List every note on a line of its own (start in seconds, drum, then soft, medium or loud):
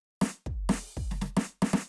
0.22 closed hi-hat loud
0.22 snare loud
0.47 kick medium
0.70 open hi-hat loud
0.70 snare loud
0.97 kick medium
1.12 snare medium
1.22 snare loud
1.37 snare loud
1.63 snare loud
1.67 hi-hat pedal soft
1.74 snare loud